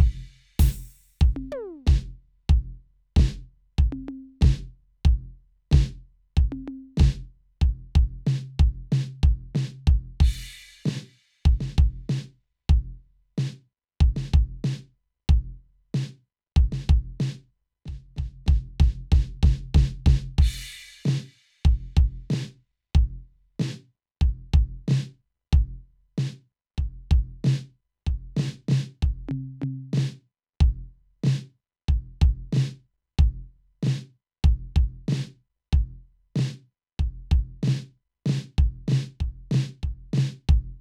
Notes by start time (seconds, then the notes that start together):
0.01 kick
0.61 open hi-hat, kick, snare
0.77 snare
1.23 kick
1.38 high tom
1.53 high tom
1.89 kick, snare
2.51 kick
3.18 kick, snare
3.21 snare
3.80 kick
3.94 high tom
4.10 high tom
4.43 kick, snare
4.46 snare
5.07 kick
5.73 kick, snare
5.76 snare
6.39 kick
6.54 high tom
6.70 high tom
6.99 kick, snare
7.03 snare
7.63 kick
7.97 kick
8.29 snare, floor tom
8.61 kick
8.94 snare, floor tom
9.25 kick
9.57 snare, floor tom
9.89 kick
10.22 kick, crash
10.88 snare
10.90 snare
11.47 kick
11.63 snare
11.80 kick
12.11 snare
12.71 kick
13.40 snare
14.02 kick
14.18 snare
14.36 kick
14.66 snare
15.31 kick
15.96 snare
16.58 kick
16.74 snare
16.91 kick
17.22 snare
17.88 kick, snare, floor tom
18.18 kick, snare, floor tom
18.48 kick, snare, floor tom
18.82 kick, snare, floor tom
19.14 kick, snare, floor tom
19.45 kick, snare, floor tom
19.76 kick, snare, floor tom
20.08 kick, snare, floor tom
20.40 kick, crash
21.07 snare
21.10 snare
21.67 kick
21.99 kick
22.32 snare
22.35 snare
22.97 kick
23.61 snare
23.63 snare
24.23 kick
24.55 kick
24.90 snare
24.93 snare
25.55 kick
26.20 snare
26.80 kick
27.13 kick
27.46 snare
27.48 snare
28.09 kick
28.39 snare
28.41 snare
28.70 snare
28.73 snare
29.04 kick
29.31 floor tom, high tom
29.64 floor tom, high tom
29.95 snare
29.99 snare
30.62 kick
31.26 snare
31.28 snare
31.90 kick
32.23 kick
32.55 snare
32.58 snare
33.21 kick
33.85 snare
33.89 snare
34.46 kick
34.78 kick
35.10 snare
35.14 snare
35.75 kick
36.38 snare
36.41 snare
37.01 kick
37.33 kick
37.65 snare
37.69 snare
38.28 snare
38.31 snare
38.60 kick
38.90 snare
38.94 snare
39.22 kick
39.53 snare
39.56 snare
39.85 kick
40.15 snare
40.20 snare
40.51 kick